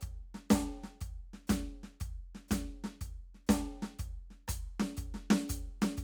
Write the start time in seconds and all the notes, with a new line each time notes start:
0.01 closed hi-hat, kick
0.34 snare
0.50 closed hi-hat, kick, snare, hi-hat pedal
0.84 snare
1.01 closed hi-hat, kick
1.34 snare
1.47 closed hi-hat, kick, snare, hi-hat pedal
1.83 snare
2.00 closed hi-hat, kick
2.35 snare
2.48 closed hi-hat, kick, snare, hi-hat pedal
2.84 snare
3.01 closed hi-hat, kick
3.35 snare
3.47 closed hi-hat, kick, snare, hi-hat pedal
3.82 snare
3.99 closed hi-hat, kick
4.31 snare
4.48 closed hi-hat, kick, cross-stick, hi-hat pedal
4.80 snare
4.97 closed hi-hat, kick
5.14 snare
5.30 snare
5.48 closed hi-hat, kick, hi-hat pedal
5.82 closed hi-hat, snare
5.97 closed hi-hat, kick